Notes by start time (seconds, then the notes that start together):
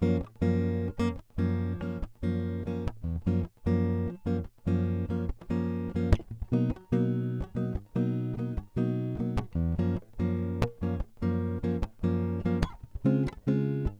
0.01 F#2 F3 A#3 C#4
0.43 F#2 F3 A#3 C#4
1.01 F#2 F3 A#3 C#4
1.39 F#2 F3 A#3 C#4
1.82 F#2 F3 A#3 C#4
2.24 F#2 F3 A#3 C#4
2.68 F#2 F3 A#3 C#4
3.05 E2
3.28 F#2 F3 A#3 C#4
3.68 F#2 F3 A#3 C#4
4.27 F#2 F3 A#3 C#4
4.68 F#2 F3 A#3 C#4
5.11 F#2 F3 A#3 C#4
5.52 F#2 F3 A#3 C#4
5.96 F#2 F3 A#3 C#4
6.32 A2
6.54 B2 G3 A#3 D#4
6.93 B2 F#3 A#3 D#4
7.56 B2 F#3 A#3 D#4
7.97 B2 F#3 A#3 D#4
8.35 B2
8.40 F#3 A#3 D#4
8.78 B2 F#3 A#3 D#4
9.17 B2 D#4
9.22 F#3 A#3
9.57 E2
9.80 F#2 F3 A#3 C#4
10.20 F#2 F3 A#3 C#4
10.83 F#2 F3 A#3 C#4
11.24 F#2 F3 A#3 C#4
11.64 F#2 F3 A#3 C#4
12.05 F#2 F3 A#3 C#4
12.47 F#2 F3 A#3 C#4
13.06 C#3 G#3 C4 F4
13.48 C#3 G#3 C4 F4